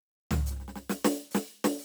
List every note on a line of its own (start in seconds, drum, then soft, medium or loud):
0.31 snare medium
0.31 floor tom loud
0.46 hi-hat pedal medium
0.51 snare soft
0.55 snare soft
0.60 snare soft
0.68 snare soft
0.76 snare medium
0.90 snare loud
0.90 hi-hat pedal medium
1.05 snare loud
1.31 snare loud
1.31 hi-hat pedal medium
1.64 snare loud
1.79 hi-hat pedal medium